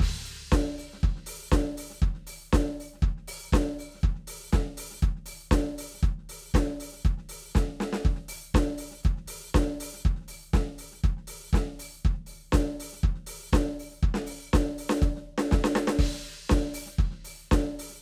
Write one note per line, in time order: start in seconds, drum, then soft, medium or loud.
0.01 kick loud
0.01 crash loud
0.19 snare soft
0.26 closed hi-hat medium
0.51 kick loud
0.51 snare loud
0.51 hi-hat pedal soft
0.78 open hi-hat medium
0.94 snare soft
0.99 hi-hat pedal soft
1.04 kick loud
1.04 closed hi-hat soft
1.16 snare soft
1.27 open hi-hat loud
1.49 kick loud
1.49 snare loud
1.49 hi-hat pedal soft
1.54 closed hi-hat medium
1.78 open hi-hat loud
1.91 snare soft
1.98 hi-hat pedal soft
2.02 kick loud
2.02 closed hi-hat soft
2.14 snare soft
2.27 open hi-hat loud
2.50 kick loud
2.50 snare loud
2.50 hi-hat pedal soft
2.55 closed hi-hat medium
2.69 snare soft
2.81 open hi-hat medium
2.94 snare soft
2.99 kick loud
2.99 snare soft
2.99 hi-hat pedal soft
3.04 closed hi-hat soft
3.17 snare soft
3.28 open hi-hat loud
3.48 hi-hat pedal soft
3.53 kick loud
3.53 snare loud
3.53 closed hi-hat medium
3.62 snare soft
3.67 snare soft
3.69 snare soft
3.75 open hi-hat medium
3.75 snare soft
3.95 snare soft
4.00 kick loud
4.00 hi-hat pedal soft
4.04 closed hi-hat soft
4.15 snare soft
4.20 snare soft
4.28 open hi-hat loud
4.49 snare loud
4.49 closed hi-hat medium
4.49 hi-hat pedal soft
4.54 kick loud
4.61 snare soft
4.78 open hi-hat loud
4.91 snare soft
4.95 snare soft
4.95 hi-hat pedal soft
5.03 kick loud
5.03 closed hi-hat medium
5.16 snare soft
5.26 open hi-hat loud
5.48 kick loud
5.48 snare loud
5.48 hi-hat pedal soft
5.53 closed hi-hat medium
5.60 snare soft
5.65 snare soft
5.69 kick soft
5.79 open hi-hat loud
5.94 snare soft
6.00 kick loud
6.00 hi-hat pedal soft
6.05 closed hi-hat soft
6.19 snare soft
6.25 snare soft
6.30 open hi-hat loud
6.52 kick loud
6.52 snare loud
6.52 hi-hat pedal soft
6.56 closed hi-hat medium
6.80 open hi-hat loud
6.93 snare soft
7.02 kick loud
7.02 closed hi-hat medium
7.02 hi-hat pedal soft
7.18 snare soft
7.29 open hi-hat loud
7.53 closed hi-hat medium
7.53 kick loud
7.53 snare loud
7.53 hi-hat pedal soft
7.81 snare loud
7.93 snare loud
8.03 kick loud
8.03 closed hi-hat soft
8.03 hi-hat pedal soft
8.16 snare soft
8.29 open hi-hat loud
8.53 kick loud
8.53 snare loud
8.53 closed hi-hat soft
8.53 hi-hat pedal soft
8.78 open hi-hat loud
8.91 snare soft
9.00 closed hi-hat medium
9.00 hi-hat pedal soft
9.06 kick loud
9.17 snare soft
9.27 open hi-hat loud
9.27 kick soft
9.51 hi-hat pedal soft
9.55 kick loud
9.55 snare loud
9.55 closed hi-hat medium
9.62 snare soft
9.72 snare soft
9.81 open hi-hat loud
9.94 snare soft
9.99 snare soft
9.99 hi-hat pedal soft
10.05 closed hi-hat soft
10.05 kick loud
10.16 snare soft
10.21 snare soft
10.28 open hi-hat loud
10.50 kick loud
10.50 snare loud
10.50 hi-hat pedal soft
10.55 closed hi-hat medium
10.70 snare soft
10.79 open hi-hat medium
10.93 snare soft
10.99 hi-hat pedal soft
11.04 closed hi-hat soft
11.04 kick loud
11.18 snare soft
11.28 open hi-hat loud
11.51 kick loud
11.51 hi-hat pedal soft
11.55 closed hi-hat soft
11.55 snare loud
11.80 open hi-hat loud
12.02 closed hi-hat soft
12.02 kick loud
12.02 hi-hat pedal soft
12.14 snare soft
12.18 snare soft
12.27 open hi-hat medium
12.51 closed hi-hat medium
12.51 kick loud
12.51 snare loud
12.51 hi-hat pedal soft
12.60 snare soft
12.80 open hi-hat loud
12.93 snare soft
12.99 hi-hat pedal soft
13.04 kick loud
13.04 closed hi-hat soft
13.15 snare soft
13.27 open hi-hat loud
13.50 kick loud
13.50 snare loud
13.50 closed hi-hat medium
13.50 hi-hat pedal soft
13.80 open hi-hat medium
13.92 snare soft
13.98 hi-hat pedal soft
14.03 kick loud
14.03 closed hi-hat soft
14.15 snare loud
14.27 open hi-hat loud
14.49 hi-hat pedal soft
14.54 closed hi-hat medium
14.54 kick loud
14.54 snare loud
14.79 open hi-hat medium
14.90 snare loud
14.97 snare soft
14.97 hi-hat pedal soft
15.02 kick loud
15.02 closed hi-hat medium
15.16 snare soft
15.38 snare loud
15.50 kick loud
15.50 snare loud
15.50 hi-hat pedal soft
15.65 snare loud
15.76 snare loud
15.88 snare loud
15.97 kick loud
15.97 hi-hat pedal soft
15.97 crash loud
16.13 snare soft
16.50 kick loud
16.50 snare loud
16.57 snare soft
16.74 open hi-hat loud
16.87 snare soft
16.95 hi-hat pedal soft
16.99 kick loud
16.99 closed hi-hat soft
17.11 snare soft
17.25 open hi-hat loud
17.47 hi-hat pedal soft
17.52 kick loud
17.52 snare loud
17.52 closed hi-hat medium
17.60 snare soft
17.80 open hi-hat loud
17.90 snare soft
17.97 hi-hat pedal soft